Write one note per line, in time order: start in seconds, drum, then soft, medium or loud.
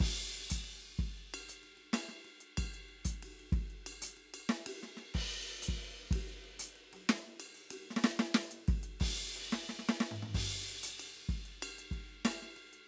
0.00 kick medium
0.00 ride loud
0.34 ride soft
0.50 closed hi-hat loud
0.50 kick medium
0.70 ride soft
0.85 closed hi-hat soft
0.99 kick medium
0.99 ride soft
1.17 closed hi-hat soft
1.34 ride bell loud
1.49 closed hi-hat medium
1.63 ride soft
1.77 ride soft
1.93 snare loud
1.93 ride bell loud
2.08 snare soft
2.24 ride soft
2.40 closed hi-hat medium
2.57 kick medium
2.57 ride bell loud
2.74 closed hi-hat medium
2.89 ride soft
3.05 closed hi-hat loud
3.05 kick medium
3.23 ride medium
3.39 closed hi-hat soft
3.52 kick medium
3.52 ride soft
3.70 closed hi-hat soft
3.86 ride bell loud
4.02 closed hi-hat loud
4.17 ride soft
4.34 ride bell medium
4.49 snare loud
4.66 ride loud
4.83 snare soft
4.97 snare soft
5.14 kick medium
5.14 crash loud
5.30 closed hi-hat soft
5.46 ride soft
5.62 closed hi-hat loud
5.68 kick medium
5.80 ride soft
5.95 closed hi-hat soft
6.11 kick medium
6.11 ride loud
6.28 closed hi-hat soft
6.44 ride soft
6.59 closed hi-hat loud
6.76 ride soft
6.93 cross-stick soft
6.93 high tom soft
6.93 ride medium
6.93 floor tom soft
7.09 snare loud
7.40 ride bell medium
7.54 open hi-hat medium
7.70 hi-hat pedal medium
7.70 ride loud
7.90 snare soft
7.96 snare medium
8.04 snare loud
8.19 snare loud
8.34 snare loud
8.51 closed hi-hat medium
8.68 kick medium
8.68 ride medium
8.83 closed hi-hat medium
9.00 kick medium
9.00 ride loud
9.17 closed hi-hat medium
9.35 crash medium
9.52 snare medium
9.62 hi-hat pedal medium
9.69 snare medium
9.79 snare soft
9.89 snare loud
10.00 snare loud
10.11 floor tom medium
10.22 floor tom medium
10.34 kick medium
10.34 ride loud
10.51 closed hi-hat medium
10.67 ride soft
10.83 closed hi-hat loud
10.99 ride bell medium
11.14 closed hi-hat soft
11.29 kick medium
11.29 ride soft
11.45 closed hi-hat soft
11.62 ride bell loud
11.78 closed hi-hat medium
11.91 kick soft
11.91 ride medium
12.08 ride bell soft
12.25 snare loud
12.25 ride bell loud
12.42 snare soft
12.56 ride medium
12.73 closed hi-hat medium